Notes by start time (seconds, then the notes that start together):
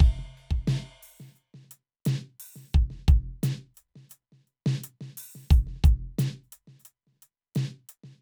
0.01 kick, ride
0.20 floor tom
0.38 ride
0.51 kick
0.68 snare, ride
1.03 open hi-hat
1.21 snare
1.36 hi-hat pedal
1.55 snare
1.65 snare
1.72 closed hi-hat
2.06 closed hi-hat, snare
2.40 open hi-hat
2.57 snare
2.73 closed hi-hat, kick, hi-hat pedal
2.91 snare
3.09 closed hi-hat, kick
3.44 closed hi-hat, snare
3.75 closed hi-hat, hi-hat pedal
3.96 snare
4.10 closed hi-hat, hi-hat pedal
4.33 snare
4.48 closed hi-hat
4.67 snare
4.84 closed hi-hat
5.02 snare
5.18 open hi-hat
5.36 snare
5.51 open hi-hat, kick, hi-hat pedal
5.68 snare
5.77 snare
5.85 closed hi-hat, kick
6.19 closed hi-hat, snare
6.44 hi-hat pedal
6.53 closed hi-hat
6.68 snare
6.80 hi-hat pedal
6.86 closed hi-hat
7.08 snare
7.13 snare
7.17 snare
7.23 closed hi-hat
7.56 closed hi-hat, snare
7.90 closed hi-hat
8.04 snare